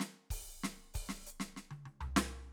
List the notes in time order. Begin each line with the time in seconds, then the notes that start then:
0.00 snare
0.30 open hi-hat, kick
0.63 snare
0.94 open hi-hat, kick
1.09 snare
1.26 hi-hat pedal
1.40 snare
1.56 snare
1.71 high tom
1.85 high tom
2.01 floor tom
2.16 snare